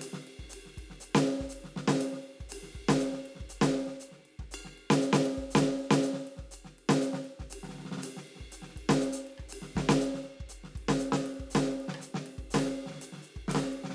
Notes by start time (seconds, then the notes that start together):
0.01 hi-hat pedal, ride
0.13 snare
0.27 ride
0.39 kick, snare
0.50 hi-hat pedal, ride
0.66 snare
0.77 kick, ride
0.90 snare
1.00 hi-hat pedal
1.04 ride
1.15 snare
1.23 hi-hat pedal
1.27 ride
1.39 kick, snare
1.49 hi-hat pedal, ride
1.64 snare
1.76 snare
1.88 snare
1.94 snare
2.00 hi-hat pedal, ride
2.13 snare
2.21 snare, ride
2.35 snare
2.38 kick, snare
2.49 hi-hat pedal, ride
2.63 snare
2.75 kick, ride
2.89 snare
2.94 cross-stick
2.99 hi-hat pedal, ride
3.13 snare
3.26 ride
3.35 snare
3.40 kick
3.49 hi-hat pedal, ride bell
3.61 snare
3.67 cross-stick
3.73 hi-hat pedal, ride
3.87 snare
4.00 hi-hat pedal, ride bell
4.11 snare
4.19 snare
4.25 ride
4.39 kick, snare
4.51 hi-hat pedal, ride bell
4.65 snare
4.74 hi-hat pedal, ride
4.90 snare
4.96 cross-stick
5.01 hi-hat pedal, ride
5.13 snare
5.23 hi-hat pedal, ride
5.38 kick
5.51 hi-hat pedal
5.55 snare, ride bell
5.61 snare
5.72 hi-hat pedal
5.79 ride
5.91 snare
6.03 hi-hat pedal, ride bell
6.13 snare
6.27 ride
6.37 kick, snare
6.51 hi-hat pedal, ride bell
6.65 snare
6.79 ride
6.89 snare
7.01 hi-hat pedal, ride
7.13 snare
7.23 hi-hat pedal, ride
7.39 kick, snare
7.50 hi-hat pedal, ride
7.63 snare
7.69 snare
7.74 snare
7.79 snare
7.85 snare
7.91 snare
7.97 snare
8.02 snare, hi-hat pedal, ride
8.17 snare
8.24 hi-hat pedal, ride
8.35 snare
8.40 kick, snare
8.52 hi-hat pedal, ride
8.62 snare
8.69 snare
8.76 kick, ride
8.89 snare
9.01 hi-hat pedal, ride
9.13 closed hi-hat
9.27 ride
9.38 kick, cross-stick
9.49 hi-hat pedal, ride
9.62 snare
9.71 hi-hat pedal
9.75 kick, snare
9.89 snare
10.01 hi-hat pedal, ride bell
10.14 snare
10.23 snare, hi-hat pedal, ride
10.35 snare
10.40 kick, snare
10.49 hi-hat pedal, ride bell
10.64 snare
10.70 hi-hat pedal
10.75 kick, ride
10.81 kick
10.89 snare
10.99 hi-hat pedal, ride
11.12 snare
11.26 ride
11.40 kick
11.50 hi-hat pedal
11.55 snare, ride
11.64 snare
11.80 ride
11.88 snare
11.94 cross-stick
11.99 snare, hi-hat pedal, ride
12.14 snare
12.26 ride
12.38 kick
12.44 kick
12.51 snare, hi-hat pedal
12.55 ride
12.59 cross-stick
12.62 cross-stick, snare
12.69 snare
12.86 snare
12.91 snare
12.95 snare
13.01 hi-hat pedal, ride
13.12 snare
13.17 snare
13.22 hi-hat pedal, ride
13.36 kick
13.48 snare, hi-hat pedal, ride
13.55 cross-stick, snare
13.63 snare
13.73 ride
13.84 snare
13.90 snare